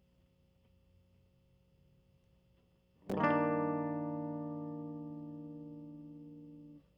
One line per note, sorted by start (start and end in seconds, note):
3.11 6.84 G2
3.18 6.86 D#3
3.18 6.81 A#3
3.24 6.81 D4